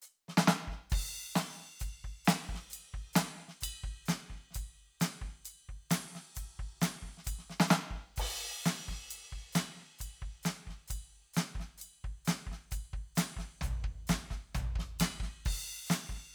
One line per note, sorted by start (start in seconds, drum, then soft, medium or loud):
0.04 hi-hat pedal medium
0.28 snare medium
0.37 snare loud
0.47 snare loud
0.67 kick soft
0.67 snare soft
0.90 kick medium
0.90 hi-hat pedal medium
0.90 crash medium
1.35 snare loud
1.35 hi-hat pedal medium
1.35 ride bell medium
1.79 kick medium
1.79 hi-hat pedal medium
1.79 ride bell soft
2.04 kick soft
2.25 snare loud
2.25 hi-hat pedal medium
2.25 crash medium
2.25 ride bell medium
2.49 kick medium
2.55 snare soft
2.70 hi-hat pedal medium
2.70 ride bell medium
2.94 kick soft
3.13 snare loud
3.13 hi-hat pedal medium
3.13 ride bell loud
3.48 snare soft
3.61 kick soft
3.61 hi-hat pedal medium
3.61 ride bell loud
3.83 kick medium
4.05 snare loud
4.05 hi-hat pedal medium
4.05 ride bell medium
4.30 kick soft
4.51 snare soft
4.51 hi-hat pedal medium
4.55 kick medium
4.55 ride bell medium
5.00 snare loud
5.00 hi-hat pedal medium
5.00 ride bell medium
5.21 kick soft
5.45 hi-hat pedal medium
5.45 ride bell medium
5.69 kick soft
5.90 snare loud
5.90 hi-hat pedal medium
5.90 ride loud
6.15 snare soft
6.35 kick soft
6.35 hi-hat pedal medium
6.35 ride medium
6.59 kick medium
6.81 snare loud
6.81 hi-hat pedal medium
6.81 ride loud
7.02 kick soft
7.17 snare soft
7.24 kick medium
7.24 hi-hat pedal medium
7.24 ride bell medium
7.38 snare soft
7.50 snare soft
7.60 snare loud
7.68 snare loud
7.68 hi-hat pedal medium
7.90 kick soft
8.16 kick medium
8.16 hi-hat pedal medium
8.16 crash loud
8.64 snare loud
8.64 hi-hat pedal medium
8.64 ride medium
8.88 kick soft
8.88 snare soft
9.10 hi-hat pedal medium
9.10 ride bell medium
9.32 kick soft
9.52 snare loud
9.52 hi-hat pedal medium
9.52 ride bell loud
9.98 kick soft
9.98 snare soft
9.98 hi-hat pedal medium
9.98 ride bell medium
10.22 kick soft
10.43 snare loud
10.43 hi-hat pedal medium
10.43 ride bell medium
10.67 kick soft
10.67 snare soft
10.87 kick medium
10.87 hi-hat pedal medium
10.87 ride bell medium
11.34 snare loud
11.34 hi-hat pedal medium
11.34 ride bell medium
11.55 kick medium
11.60 snare soft
11.78 hi-hat pedal medium
11.78 ride bell medium
12.04 kick medium
12.25 snare loud
12.25 hi-hat pedal medium
12.25 ride bell medium
12.46 kick soft
12.52 snare soft
12.71 kick medium
12.71 hi-hat pedal medium
12.71 ride bell medium
12.93 kick medium
13.15 snare loud
13.15 hi-hat pedal medium
13.15 ride bell loud
13.36 kick soft
13.36 snare soft
13.61 kick medium
13.61 floor tom loud
13.61 hi-hat pedal medium
13.84 kick medium
14.07 kick soft
14.07 snare loud
14.07 hi-hat pedal medium
14.07 ride bell medium
14.30 kick medium
14.30 snare soft
14.54 kick medium
14.54 floor tom loud
14.54 hi-hat pedal medium
14.75 kick medium
14.75 snare medium
14.99 kick soft
14.99 snare loud
14.99 hi-hat pedal medium
14.99 ride bell loud
15.20 kick medium
15.20 snare soft
15.45 kick medium
15.45 crash medium
15.86 snare loud
15.86 hi-hat pedal medium
15.91 closed hi-hat medium
16.09 kick soft